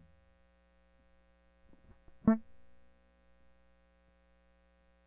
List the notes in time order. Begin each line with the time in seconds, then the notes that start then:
2.29 A3